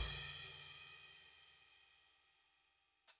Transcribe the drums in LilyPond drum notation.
\new DrumStaff \drummode { \time 4/4 \tempo 4 = 75 r4 r4 r4 \tuplet 3/2 { r16 r16 r16 r16 r16 hhp16 } | }